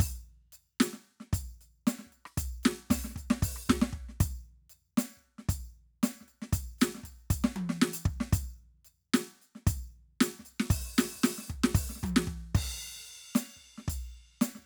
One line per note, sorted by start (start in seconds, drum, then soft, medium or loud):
0.01 kick loud
0.01 percussion loud
0.53 percussion medium
0.81 snare loud
0.81 percussion loud
0.94 snare soft
1.21 snare soft
1.34 kick loud
1.34 percussion loud
1.62 percussion soft
1.88 snare loud
1.88 percussion loud
1.99 snare soft
2.02 snare soft
2.04 kick soft
2.04 snare soft
2.13 percussion soft
2.26 cross-stick medium
2.38 kick loud
2.38 percussion loud
2.64 kick soft
2.64 snare loud
2.64 percussion medium
2.91 kick medium
2.91 snare loud
2.91 percussion loud
3.05 snare medium
3.10 snare soft
3.10 percussion soft
3.16 kick medium
3.16 snare soft
3.16 percussion medium
3.31 snare loud
3.43 kick loud
3.43 percussion loud
3.57 cross-stick soft
3.67 kick medium
3.67 snare loud
3.67 percussion soft
3.82 snare loud
3.94 kick medium
4.10 snare soft
4.21 kick loud
4.21 percussion loud
4.70 percussion medium
4.98 snare loud
4.98 percussion loud
5.18 kick soft
5.39 snare soft
5.50 kick loud
5.50 percussion loud
6.04 snare loud
6.04 percussion loud
6.22 kick soft
6.22 snare soft
6.29 percussion soft
6.43 snare medium
6.53 kick loud
6.53 percussion loud
6.79 percussion soft
6.82 snare loud
6.82 percussion loud
6.95 snare soft
6.98 snare soft
7.04 kick soft
7.04 percussion medium
7.19 percussion soft
7.31 kick loud
7.31 percussion loud
7.45 snare loud
7.57 high tom loud
7.70 snare medium
7.82 snare loud
7.94 percussion loud
8.06 kick loud
8.21 snare medium
8.33 kick loud
8.33 percussion loud
8.86 percussion soft
9.15 snare loud
9.15 percussion loud
9.42 percussion soft
9.56 snare soft
9.68 kick loud
9.68 percussion loud
10.22 snare loud
10.22 percussion loud
10.40 kick soft
10.40 snare soft
10.46 percussion medium
10.61 snare medium
10.71 kick loud
10.71 percussion loud
10.99 snare loud
10.99 percussion loud
11.16 kick soft
11.24 snare loud
11.24 percussion loud
11.39 snare soft
11.43 snare soft
11.43 percussion soft
11.49 kick medium
11.49 snare soft
11.49 percussion soft
11.64 snare loud
11.75 kick loud
11.75 percussion loud
11.90 snare soft
11.96 snare soft
12.00 kick medium
12.00 snare soft
12.05 high tom loud
12.05 percussion medium
12.17 snare loud
12.28 kick medium
12.52 kick soft
12.56 kick loud
12.56 crash loud
12.56 percussion medium
13.06 percussion soft
13.36 snare loud
13.36 percussion loud
13.57 kick soft
13.79 snare soft
13.89 kick medium
13.89 percussion loud
14.42 snare loud
14.42 percussion loud
14.56 kick soft
14.56 snare soft